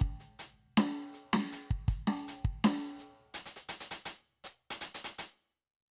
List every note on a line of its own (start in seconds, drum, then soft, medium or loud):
0.02 kick medium
0.02 hi-hat pedal medium
0.21 closed hi-hat medium
0.40 closed hi-hat loud
0.78 closed hi-hat loud
0.78 snare loud
0.97 closed hi-hat soft
1.14 closed hi-hat medium
1.14 hi-hat pedal soft
1.34 snare loud
1.53 closed hi-hat loud
1.71 kick soft
1.71 closed hi-hat soft
1.89 closed hi-hat loud
1.89 kick medium
2.08 snare loud
2.29 closed hi-hat loud
2.45 kick soft
2.45 closed hi-hat soft
2.65 open hi-hat loud
2.65 snare loud
3.00 hi-hat pedal medium
3.35 closed hi-hat loud
3.46 closed hi-hat medium
3.57 closed hi-hat medium
3.70 closed hi-hat loud
3.81 closed hi-hat loud
3.92 closed hi-hat loud
4.06 closed hi-hat loud
4.45 hi-hat pedal medium
4.71 closed hi-hat loud
4.82 closed hi-hat loud
4.95 closed hi-hat loud
5.05 closed hi-hat loud
5.19 open hi-hat loud